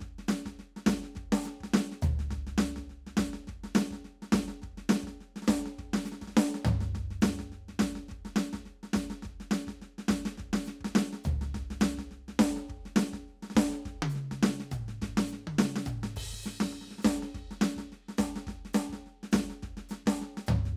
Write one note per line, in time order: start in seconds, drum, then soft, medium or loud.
0.01 kick soft
0.01 snare soft
0.09 kick soft
0.19 snare soft
0.28 snare loud
0.28 hi-hat pedal medium
0.46 kick soft
0.46 snare soft
0.59 snare soft
0.77 snare soft
0.87 kick soft
0.87 snare loud
0.87 hi-hat pedal medium
1.04 snare soft
1.16 kick soft
1.16 snare soft
1.24 kick soft
1.33 snare loud
1.43 snare soft
1.43 hi-hat pedal medium
1.61 kick soft
1.61 snare soft
1.92 snare soft
2.02 kick soft
2.02 floor tom loud
2.02 hi-hat pedal medium
2.10 kick soft
2.13 kick soft
2.20 snare soft
2.31 kick medium
2.31 snare soft
2.39 kick soft
2.47 snare soft
2.58 snare loud
2.58 hi-hat pedal medium
2.77 kick soft
2.77 snare soft
2.90 snare soft
3.07 snare soft
3.18 kick soft
3.18 snare loud
3.18 hi-hat pedal medium
3.28 kick soft
3.34 snare soft
3.48 kick soft
3.48 snare soft
3.64 snare soft
3.75 snare loud
3.75 hi-hat pedal medium
3.91 kick soft
3.91 snare soft
4.05 snare soft
4.23 snare soft
4.33 kick soft
4.33 snare loud
4.33 hi-hat pedal medium
4.40 kick soft
4.43 kick soft
4.49 snare soft
4.62 kick soft
4.62 snare soft
4.72 kick soft
4.78 snare soft
4.90 snare loud
4.90 hi-hat pedal medium
5.04 kick soft
5.08 snare soft
5.21 snare soft
5.37 snare soft
5.43 snare soft
5.48 kick soft
5.48 snare loud
5.48 hi-hat pedal medium
5.54 kick soft
5.66 snare soft
5.79 kick soft
5.79 snare soft
5.86 kick soft
5.94 snare loud
5.99 cross-stick medium
6.06 snare soft
6.06 hi-hat pedal medium
6.12 snare soft
6.20 snare soft
6.22 kick soft
6.22 snare soft
6.28 snare soft
6.32 snare soft
6.37 snare loud
6.55 snare soft
6.65 kick soft
6.65 hi-hat pedal medium
6.65 floor tom loud
6.74 kick soft
6.77 kick soft
6.81 snare soft
6.95 kick soft
6.95 snare soft
7.02 kick soft
7.06 kick soft
7.11 snare soft
7.22 snare loud
7.22 hi-hat pedal medium
7.40 kick soft
7.40 snare soft
7.52 snare soft
7.69 snare soft
7.80 kick soft
7.80 snare loud
7.80 hi-hat pedal medium
7.88 kick soft
7.91 kick soft
7.96 snare soft
8.09 kick soft
8.09 snare soft
8.25 snare soft
8.37 snare loud
8.37 hi-hat pedal medium
8.53 kick soft
8.53 snare medium
8.66 snare soft
8.84 snare soft
8.94 kick soft
8.94 snare loud
8.94 hi-hat pedal medium
9.02 kick soft
9.10 snare soft
9.23 kick soft
9.23 snare soft
9.32 kick soft
9.41 snare soft
9.52 snare loud
9.52 hi-hat pedal medium
9.68 kick soft
9.68 snare soft
9.82 snare soft
9.99 snare soft
10.10 kick soft
10.10 hi-hat pedal medium
10.19 kick soft
10.26 snare medium
10.38 kick soft
10.38 snare soft
10.46 kick soft
10.54 snare loud
10.65 snare soft
10.65 hi-hat pedal medium
10.81 kick soft
10.81 snare medium
10.96 snare loud
11.13 snare soft
11.24 kick soft
11.24 floor tom loud
11.24 hi-hat pedal medium
11.35 kick soft
11.42 snare soft
11.55 kick soft
11.55 snare medium
11.61 kick soft
11.65 kick soft
11.71 snare soft
11.81 snare loud
11.81 hi-hat pedal medium
11.98 kick soft
11.98 snare soft
12.12 snare soft
12.29 snare soft
12.40 kick soft
12.40 snare loud
12.40 hi-hat pedal medium
12.47 kick soft
12.57 snare soft
12.69 kick soft
12.69 snare soft
12.77 kick soft
12.86 snare soft
12.97 snare loud
12.97 hi-hat pedal medium
13.13 kick soft
13.13 snare soft
13.28 snare soft
13.37 snare soft
13.43 snare soft
13.51 snare soft
13.56 kick soft
13.56 snare loud
13.56 hi-hat pedal medium
13.72 snare soft
13.86 kick soft
13.86 snare soft
13.93 kick soft
14.03 high tom loud
14.10 hi-hat pedal medium
14.16 snare soft
14.32 kick soft
14.32 snare medium
14.36 kick soft
14.43 snare loud
14.60 snare soft
14.72 kick soft
14.72 hi-hat pedal medium
14.72 mid tom loud
14.80 kick soft
14.82 kick soft
14.89 snare soft
15.02 kick medium
15.02 snare medium
15.09 kick soft
15.18 snare loud
15.28 hi-hat pedal medium
15.33 snare soft
15.47 kick soft
15.47 high tom loud
15.59 snare loud
15.76 snare medium
15.86 kick medium
15.86 hi-hat pedal medium
15.86 mid tom loud
16.04 snare medium
16.17 kick medium
16.17 crash loud
16.24 kick soft
16.29 kick soft
16.33 snare soft
16.43 snare medium
16.43 hi-hat pedal medium
16.61 kick soft
16.61 snare loud
16.73 snare soft
16.82 snare soft
16.88 snare soft
16.91 snare soft
16.99 snare soft
16.99 hi-hat pedal medium
17.05 kick soft
17.05 snare loud
17.23 snare soft
17.35 kick soft
17.35 snare soft
17.42 kick soft
17.51 snare soft
17.62 snare loud
17.62 hi-hat pedal medium
17.77 kick soft
17.77 snare soft
17.93 snare soft
18.09 snare soft
18.18 kick soft
18.18 snare loud
18.18 hi-hat pedal medium
18.36 snare medium
18.47 kick soft
18.47 snare soft
18.54 kick soft
18.66 snare soft
18.74 snare loud
18.74 hi-hat pedal medium
18.90 kick soft
18.90 snare soft
18.95 kick soft
19.07 snare soft
19.24 snare soft
19.32 kick soft
19.32 snare loud
19.32 hi-hat pedal medium
19.40 kick soft
19.50 snare soft
19.63 kick soft
19.63 snare soft
19.70 kick soft
19.78 snare soft
19.89 snare medium
19.89 hi-hat pedal medium
20.06 kick soft
20.06 snare loud
20.22 snare soft
20.38 snare medium
20.47 kick soft
20.47 hi-hat pedal medium
20.47 floor tom loud
20.55 kick soft
20.58 kick soft
20.66 snare soft